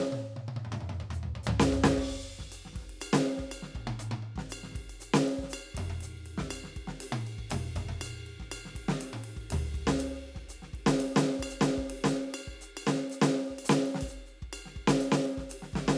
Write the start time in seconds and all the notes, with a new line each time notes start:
0.01 snare
0.13 high tom
0.37 high tom
0.49 high tom
0.57 high tom
0.65 mid tom
0.73 mid tom
0.81 mid tom
0.90 mid tom
1.01 floor tom
1.11 hi-hat pedal, mid tom
1.24 floor tom
1.36 floor tom
1.44 kick, hi-hat pedal, floor tom
1.60 snare
1.71 kick, hi-hat pedal, floor tom
1.84 snare
1.98 kick, ride
2.09 kick, cross-stick
2.11 kick
2.16 snare
2.21 hi-hat pedal
2.39 kick, snare
2.47 kick
2.52 hi-hat pedal, ride bell
2.66 snare
2.74 kick, snare, ride
2.78 snare
2.81 kick, snare
2.90 ride
3.01 hi-hat pedal, ride bell
3.14 snare
3.27 ride
3.37 kick, snare
3.52 hi-hat pedal, ride bell
3.63 snare
3.75 kick, high tom
3.81 kick
3.88 high tom
4.00 hi-hat pedal, high tom
4.12 high tom
4.23 high tom
4.36 kick, snare
4.47 kick, hi-hat pedal
4.53 ride bell
4.64 snare
4.72 kick, snare
4.77 snare, ride
4.81 kick, snare
4.85 snare
4.90 ride bell
5.01 hi-hat pedal, ride bell
5.14 snare
5.29 ride
5.39 kick
5.44 kick, snare
5.50 hi-hat pedal, ride bell
5.75 kick, mid tom, ride
5.90 mid tom
6.01 hi-hat pedal, ride
6.25 hi-hat pedal, ride
6.38 kick, snare
6.51 hi-hat pedal, ride bell
6.64 snare
6.77 kick, ride
6.88 snare
7.01 hi-hat pedal, ride
7.13 high tom
7.27 ride bell
7.39 kick
7.48 kick, hi-hat pedal, ride
7.52 mid tom
7.76 kick, mid tom, ride bell
7.82 kick
7.89 mid tom
8.02 hi-hat pedal, ride bell
8.27 ride
8.40 kick, snare
8.52 hi-hat pedal, ride bell
8.66 snare
8.76 kick, ride
8.89 snare
9.01 hi-hat pedal, ride
9.14 high tom
9.24 ride
9.37 kick
9.43 kick
9.51 floor tom, hi-hat pedal, ride
9.75 kick, ride
9.81 kick
9.88 snare
9.99 hi-hat pedal, ride
10.26 ride
10.36 kick, snare
10.49 hi-hat pedal, ride bell
10.63 snare
10.74 kick, ride
10.79 kick
10.87 snare
10.99 hi-hat pedal, ride
11.17 snare
11.23 snare
11.40 kick, ride bell
11.50 hi-hat pedal
11.62 snare
11.69 snare
11.78 kick
11.84 kick
11.90 ride
12.05 snare, hi-hat pedal
12.14 snare
12.35 ride bell
12.48 kick
12.62 hi-hat pedal
12.78 ride bell
12.87 snare
12.96 snare
13.10 hi-hat pedal, ride
13.22 snare
13.33 hi-hat pedal
13.51 kick
13.59 ride bell
13.65 hi-hat pedal
13.70 snare
13.86 ride
13.95 snare
14.02 kick, ride bell
14.09 hi-hat pedal
14.27 hi-hat pedal
14.43 kick
14.53 hi-hat pedal, ride bell
14.66 snare
14.76 kick, ride
14.82 kick
14.88 snare
15.01 hi-hat pedal, ride
15.12 snare
15.26 ride
15.38 kick, snare
15.43 kick
15.50 hi-hat pedal, ride
15.63 snare
15.74 kick, snare
15.80 kick
15.89 snare